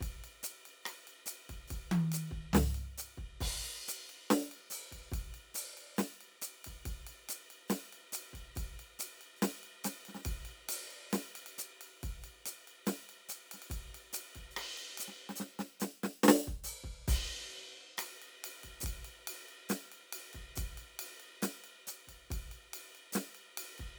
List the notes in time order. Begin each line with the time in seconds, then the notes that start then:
0.01 kick, hi-hat pedal, ride
0.24 ride
0.44 hi-hat pedal, ride
0.66 ride
0.83 cross-stick, hi-hat pedal, ride
1.08 ride
1.27 hi-hat pedal, ride
1.50 kick, ride
1.68 kick, hi-hat pedal, ride
1.92 high tom, ride
2.12 hi-hat pedal, ride
2.32 kick
2.54 snare, floor tom
2.75 ride
2.98 hi-hat pedal, ride
3.18 kick
3.41 kick, hi-hat pedal, crash, ride
3.65 ride
3.89 hi-hat pedal, ride
4.10 ride
4.30 snare, hi-hat pedal, ride
4.52 ride
4.71 hi-hat pedal, ride
4.92 kick, ride
5.11 kick, hi-hat pedal, ride
5.35 ride
5.55 hi-hat pedal, ride
5.78 ride
5.97 snare, hi-hat pedal, ride
6.21 ride
6.42 hi-hat pedal, ride
6.62 hi-hat pedal, ride
6.67 kick
6.86 kick, hi-hat pedal, ride
7.07 ride
7.29 hi-hat pedal, ride
7.51 ride
7.68 snare, hi-hat pedal, ride
7.93 ride
8.13 hi-hat pedal, ride
8.34 kick, ride
8.56 kick, hi-hat pedal, ride
8.80 ride
9.00 hi-hat pedal, ride
9.22 ride
9.37 hi-hat pedal
9.43 snare, ride
9.64 ride
9.85 snare, hi-hat pedal, ride
10.06 snare, ride
10.15 snare
10.18 snare
10.24 kick, hi-hat pedal, ride
10.46 ride
10.69 hi-hat pedal, ride
10.91 ride
11.11 snare, hi-hat pedal, ride
11.36 ride
11.47 ride
11.59 hi-hat pedal, ride
11.82 ride
12.01 kick, hi-hat pedal, ride
12.22 hi-hat pedal, ride
12.46 hi-hat pedal, ride
12.68 ride
12.86 snare, hi-hat pedal, ride
13.10 ride
13.29 hi-hat pedal, ride
13.52 snare, ride
13.62 ride
13.70 kick, hi-hat pedal, ride
13.95 ride
14.13 hi-hat pedal, ride
14.35 kick, ride
14.51 hi-hat pedal
14.57 cross-stick, ride
14.78 ride
14.98 hi-hat pedal, ride
15.08 snare
15.30 snare
15.36 hi-hat pedal
15.40 snare
15.60 snare
15.81 snare, hi-hat pedal
16.04 snare
16.24 snare
16.29 snare
16.48 kick
16.64 hi-hat pedal
16.84 kick
17.08 open hi-hat, kick, ride
17.98 cross-stick, hi-hat pedal, ride
18.22 ride
18.45 ride
18.64 kick, ride
18.81 kick, hi-hat pedal
18.87 ride
19.05 ride
19.28 ride
19.49 ride
19.70 snare, hi-hat pedal, ride
19.92 ride
20.13 ride
20.34 kick, ride
20.56 kick, hi-hat pedal, ride
20.78 ride
21.00 ride
21.20 ride
21.43 snare, hi-hat pedal, ride
21.64 ride
21.88 hi-hat pedal, ride
22.08 kick, ride
22.31 kick, hi-hat pedal, ride
22.52 ride
22.74 ride
22.95 ride
23.13 snare, hi-hat pedal, ride
23.35 ride
23.58 ride
23.79 kick, ride